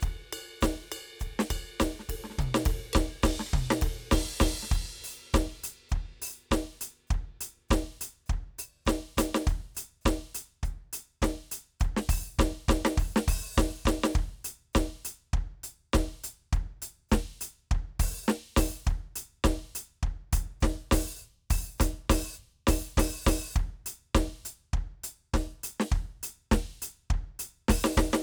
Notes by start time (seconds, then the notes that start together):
0.01 kick, hi-hat pedal, ride
0.33 ride bell
0.61 kick, snare, hi-hat pedal, ride
0.92 ride bell
1.20 kick, hi-hat pedal, ride
1.40 snare
1.51 kick, ride bell
1.80 kick, snare, hi-hat pedal, ride
2.00 snare
2.09 kick, ride
2.24 snare
2.31 snare
2.34 snare
2.39 kick, hi-hat pedal, mid tom
2.55 snare
2.66 kick, ride
2.94 kick, snare, percussion
3.23 kick, snare, ride
3.40 snare
3.47 cross-stick
3.49 cross-stick
3.54 kick, mid tom
3.71 snare
3.82 kick, ride
4.12 kick, snare, crash
4.40 kick, snare, crash
4.63 snare
4.72 kick, hi-hat pedal
5.04 open hi-hat
5.34 kick, snare, hi-hat pedal
5.64 closed hi-hat
5.90 kick, hi-hat pedal
5.95 closed hi-hat
6.22 open hi-hat
6.52 kick, snare
6.81 closed hi-hat
7.08 kick, hi-hat pedal
7.12 closed hi-hat
7.41 closed hi-hat
7.69 kick, snare, hi-hat pedal
8.01 closed hi-hat
8.26 kick, hi-hat pedal
8.31 closed hi-hat
8.59 open hi-hat, hi-hat pedal
8.86 kick, snare, closed hi-hat, hi-hat pedal
9.18 open hi-hat, kick, snare
9.35 snare
9.43 hi-hat pedal
9.47 closed hi-hat, kick
9.75 closed hi-hat, hi-hat pedal
10.02 hi-hat pedal
10.06 kick, snare
10.35 closed hi-hat
10.63 closed hi-hat, kick
10.93 closed hi-hat
11.22 kick, snare
11.52 closed hi-hat
11.80 closed hi-hat, kick
11.97 snare
12.09 open hi-hat, kick
12.39 kick, snare
12.60 snare
12.69 kick, snare
12.85 snare
12.98 open hi-hat, kick
13.16 snare
13.28 open hi-hat, kick
13.58 kick, snare
13.86 kick, snare
14.04 snare
14.13 kick, hi-hat pedal
14.45 closed hi-hat
14.74 kick, snare, hi-hat pedal
15.05 closed hi-hat
15.34 kick, closed hi-hat
15.64 closed hi-hat
15.93 kick, snare, hi-hat pedal
16.24 closed hi-hat
16.53 kick, closed hi-hat
16.82 closed hi-hat
17.09 kick, snare, hi-hat pedal
17.41 closed hi-hat
17.71 kick, closed hi-hat
18.00 open hi-hat, kick
18.26 snare, hi-hat pedal
18.30 closed hi-hat
18.57 open hi-hat, kick, snare
18.85 closed hi-hat, kick, hi-hat pedal
19.16 closed hi-hat
19.44 kick, snare
19.76 closed hi-hat
20.03 kick
20.33 open hi-hat, kick
20.61 kick, snare, hi-hat pedal
20.92 open hi-hat, kick, snare
21.19 hi-hat pedal
21.51 open hi-hat, kick
21.78 closed hi-hat, kick, snare, hi-hat pedal
22.10 open hi-hat, kick, snare
22.35 hi-hat pedal
22.68 open hi-hat, kick, snare
22.98 open hi-hat, kick, snare
23.27 open hi-hat, kick, snare
23.54 kick, hi-hat pedal
23.86 closed hi-hat
24.15 kick, snare
24.46 closed hi-hat
24.74 kick
25.04 closed hi-hat
25.34 kick, snare
25.64 closed hi-hat
25.80 snare
25.87 hi-hat pedal
25.92 kick
26.23 closed hi-hat
26.52 kick, snare
26.82 closed hi-hat
27.11 kick
27.40 closed hi-hat
27.69 open hi-hat, kick, snare
27.85 snare
27.98 kick, snare
28.14 snare